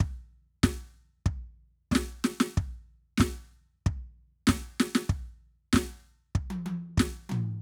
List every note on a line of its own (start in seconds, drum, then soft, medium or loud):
0.01 kick loud
0.64 kick loud
0.64 snare loud
1.27 kick loud
1.92 kick loud
1.92 snare loud
1.96 snare loud
2.25 snare loud
2.41 snare loud
2.58 kick loud
3.18 kick loud
3.18 snare loud
3.21 snare loud
3.87 kick loud
4.48 kick loud
4.48 snare loud
4.50 snare loud
4.81 snare loud
4.96 snare loud
5.10 kick loud
5.74 kick loud
5.74 snare loud
5.77 snare loud
6.36 kick loud
6.51 high tom loud
6.67 high tom loud
6.98 kick loud
6.98 snare loud
7.30 floor tom loud
7.30 high tom loud